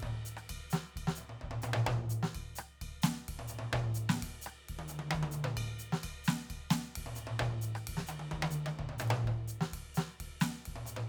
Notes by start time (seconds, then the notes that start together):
0.01 kick, mid tom, ride
0.09 kick
0.26 hi-hat pedal
0.37 cross-stick
0.50 kick, ride bell
0.71 snare, hi-hat pedal
0.97 kick, ride bell
1.08 snare
1.16 hi-hat pedal, mid tom
1.30 mid tom
1.42 kick, mid tom
1.50 kick, mid tom
1.62 hi-hat pedal, mid tom
1.74 mid tom
1.87 kick, mid tom
2.10 hi-hat pedal
2.23 snare
2.35 kick, ride bell
2.56 cross-stick, hi-hat pedal
2.82 kick, ride bell
3.03 snare, hi-hat pedal
3.29 kick, ride
3.40 mid tom
3.48 hi-hat pedal, mid tom
3.59 mid tom
3.73 kick, mid tom
3.80 kick
3.95 hi-hat pedal
4.10 snare
4.15 snare
4.23 kick, ride
4.42 hi-hat pedal
4.47 cross-stick
4.69 kick, ride
4.79 high tom
4.89 hi-hat pedal, high tom
5.00 high tom
5.11 kick, high tom
5.20 kick, high tom
5.32 hi-hat pedal, mid tom
5.45 mid tom
5.57 kick, ride bell
5.79 hi-hat pedal
5.93 snare
6.04 kick, ride bell
6.25 snare, hi-hat pedal
6.51 kick, ride bell
6.71 snare, hi-hat pedal
6.96 kick, ride
7.04 kick, mid tom
7.16 hi-hat pedal
7.28 mid tom
7.40 kick, mid tom
7.51 mid tom
7.62 hi-hat pedal
7.76 cross-stick
7.88 kick, ride
7.97 snare
8.07 hi-hat pedal, high tom
8.20 high tom
8.32 kick, high tom
8.43 high tom
8.51 hi-hat pedal, high tom
8.67 high tom
8.79 kick, mid tom
8.90 mid tom
8.99 hi-hat pedal, mid tom
9.08 mid tom, ride
9.25 kick, mid tom
9.31 kick
9.34 kick
9.48 hi-hat pedal
9.61 snare
9.74 kick, ride
9.95 snare, hi-hat pedal
10.21 kick, ride
10.41 snare, hi-hat pedal
10.66 kick, ride
10.76 mid tom
10.87 hi-hat pedal
10.97 mid tom